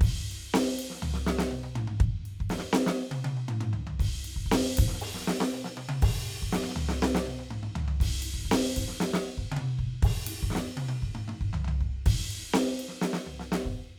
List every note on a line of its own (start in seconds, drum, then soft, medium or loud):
0.01 kick loud
0.01 ride loud
0.32 ride medium
0.54 snare loud
0.54 ride loud
0.79 ride medium
0.90 snare medium
0.95 snare soft
1.02 floor tom loud
1.14 snare medium
1.27 snare loud
1.39 snare loud
1.51 high tom medium
1.64 high tom medium
1.76 mid tom loud
1.88 mid tom medium
2.00 kick loud
2.26 ride bell soft
2.40 kick medium
2.50 snare loud
2.50 ride medium
2.59 snare medium
2.65 snare soft
2.73 snare loud
2.87 snare loud
3.11 high tom loud
3.25 high tom loud
3.37 high tom medium
3.49 mid tom loud
3.61 mid tom loud
3.73 floor tom medium
3.87 floor tom medium
4.00 kick loud
4.00 ride loud
4.25 ride medium
4.36 kick medium
4.46 kick medium
4.52 snare loud
4.52 ride loud
4.78 kick loud
4.78 ride loud
4.88 snare medium
4.94 snare soft
5.01 crash loud
5.14 snare medium
5.21 snare soft
5.28 snare loud
5.41 snare loud
5.54 high tom soft
5.65 snare medium
5.77 high tom medium
5.89 high tom loud
6.02 kick loud
6.02 crash loud
6.27 ride medium
6.42 kick medium
6.53 snare loud
6.53 ride medium
6.63 snare medium
6.69 snare medium
6.76 floor tom loud
6.89 snare loud
7.02 snare loud
7.15 snare loud
7.27 high tom medium
7.39 high tom soft
7.51 mid tom loud
7.63 mid tom medium
7.76 floor tom loud
7.88 floor tom medium
8.00 kick loud
8.00 ride loud
8.22 ride medium
8.34 kick medium
8.45 kick medium
8.52 snare loud
8.52 ride loud
8.77 kick medium
8.77 ride loud
8.88 snare medium
8.94 snare soft
9.01 snare loud
9.14 snare loud
9.38 kick medium
9.52 high tom loud
9.57 high tom loud
9.79 kick medium
10.03 kick loud
10.03 crash loud
10.27 ride loud
10.43 kick medium
10.51 snare medium
10.55 snare loud
10.77 high tom loud
10.89 high tom loud
11.02 kick medium
11.15 mid tom loud
11.28 mid tom medium
11.28 mid tom loud
11.41 kick medium
11.53 floor tom medium
11.53 floor tom loud
11.65 floor tom medium
11.68 floor tom loud
11.81 kick medium
12.06 kick loud
12.06 ride loud
12.31 ride medium
12.54 snare loud
12.54 ride medium
12.80 ride medium
12.89 snare medium
12.94 snare soft
13.02 snare loud
13.13 snare loud
13.27 floor tom medium
13.40 snare medium
13.52 snare loud
13.66 kick medium